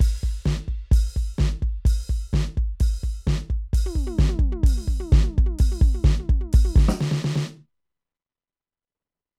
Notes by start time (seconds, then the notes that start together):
0.01 open hi-hat, kick
0.24 kick
0.46 kick, snare
0.68 kick
0.92 open hi-hat, kick
1.17 kick
1.39 kick, snare
1.63 kick
1.86 open hi-hat, kick
2.10 kick
2.34 kick, snare
2.58 kick
2.81 open hi-hat, kick
3.04 kick
3.27 kick, snare
3.50 kick
3.74 open hi-hat, kick
3.86 floor tom
3.96 kick
4.07 floor tom
4.19 kick, snare
4.29 floor tom
4.40 kick
4.52 floor tom
4.58 kick
4.64 open hi-hat, kick
4.78 floor tom
4.88 kick
5.00 floor tom
5.13 kick, snare
5.24 floor tom
5.38 kick
5.46 floor tom
5.59 open hi-hat, kick
5.72 floor tom
5.82 kick
5.94 floor tom
6.05 kick, snare
6.20 floor tom
6.30 kick
6.41 floor tom
6.53 open hi-hat, kick
6.65 floor tom
6.76 kick, snare
6.89 snare
7.01 snare
7.12 snare
7.25 snare
7.36 snare, hi-hat pedal